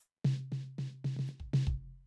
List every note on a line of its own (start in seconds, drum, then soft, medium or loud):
0.00 hi-hat pedal medium
0.24 snare medium
0.24 floor tom medium
0.52 snare soft
0.52 floor tom medium
0.78 snare soft
0.78 floor tom medium
1.04 snare soft
1.04 floor tom medium
1.16 snare soft
1.16 floor tom medium
1.27 floor tom medium
1.27 hi-hat pedal soft
1.31 snare soft
1.40 kick soft
1.53 snare medium
1.53 floor tom medium
1.67 kick soft